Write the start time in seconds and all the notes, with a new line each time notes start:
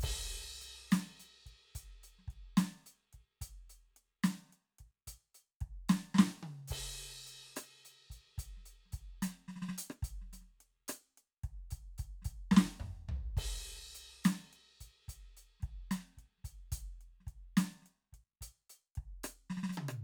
0.01 kick, hi-hat pedal, crash
0.10 kick
0.62 closed hi-hat
0.92 open hi-hat, snare
1.20 closed hi-hat, snare
1.46 kick, closed hi-hat
1.76 open hi-hat, kick
2.04 closed hi-hat
2.19 snare
2.28 kick, snare, closed hi-hat
2.58 closed hi-hat, snare
2.87 closed hi-hat
3.13 kick, closed hi-hat
3.42 closed hi-hat, kick
3.70 closed hi-hat
3.97 closed hi-hat
4.24 closed hi-hat, snare, hi-hat pedal
4.49 snare, closed hi-hat
4.79 kick, closed hi-hat
5.08 closed hi-hat, kick
5.35 closed hi-hat
5.61 kick, closed hi-hat
5.89 closed hi-hat, snare
6.15 snare
6.19 snare
6.43 high tom
6.68 kick, hi-hat pedal, crash
6.99 closed hi-hat
7.27 closed hi-hat
7.56 closed hi-hat, cross-stick, hi-hat pedal
7.86 closed hi-hat
8.11 closed hi-hat, kick
8.38 closed hi-hat, kick
8.57 snare
8.66 closed hi-hat
8.86 snare
8.91 closed hi-hat, kick, snare
9.23 closed hi-hat, snare
9.49 snare
9.56 snare
9.62 snare
9.69 snare
9.78 closed hi-hat
9.90 cross-stick
10.03 closed hi-hat, kick
10.22 snare
10.33 closed hi-hat, snare
10.41 snare
10.61 closed hi-hat
10.89 closed hi-hat, cross-stick
11.18 closed hi-hat
11.44 kick, closed hi-hat
11.71 closed hi-hat, kick
11.99 closed hi-hat, kick
12.05 kick
12.22 closed hi-hat, kick, snare
12.31 kick
12.52 kick, snare
12.57 snare
12.66 snare
12.80 kick, mid tom
12.86 kick
12.95 snare
13.09 kick, floor tom
13.15 kick
13.37 kick, crash
13.45 kick
13.95 closed hi-hat
14.25 closed hi-hat, snare
14.53 closed hi-hat
14.81 closed hi-hat, kick
15.09 closed hi-hat, kick
15.37 closed hi-hat
15.60 kick, snare, closed hi-hat
15.69 kick
15.91 closed hi-hat, snare
16.18 kick, closed hi-hat
16.38 snare
16.45 closed hi-hat, kick
16.72 closed hi-hat, kick
16.78 kick
17.01 closed hi-hat
17.21 snare
17.26 kick, snare, closed hi-hat
17.57 closed hi-hat, snare
17.82 snare, closed hi-hat
18.13 kick, closed hi-hat
18.41 closed hi-hat, kick
18.70 closed hi-hat
18.96 kick, closed hi-hat
19.24 closed hi-hat, cross-stick
19.50 snare
19.57 snare
19.64 snare
19.70 snare, hi-hat pedal
19.78 high tom
19.89 cross-stick